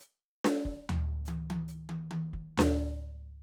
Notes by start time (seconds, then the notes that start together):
0.00 hi-hat pedal
0.44 snare
0.65 kick
0.89 floor tom
1.25 hi-hat pedal, high tom
1.50 high tom
1.68 hi-hat pedal
1.89 high tom
2.11 high tom
2.33 kick
2.57 snare, floor tom